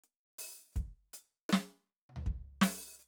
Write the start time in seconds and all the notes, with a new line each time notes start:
0.04 closed hi-hat
0.38 open hi-hat
0.72 kick, hi-hat pedal
0.76 closed hi-hat
1.13 closed hi-hat
1.49 cross-stick, snare
2.09 high tom
2.16 floor tom
2.26 kick
2.61 open hi-hat, snare
2.99 hi-hat pedal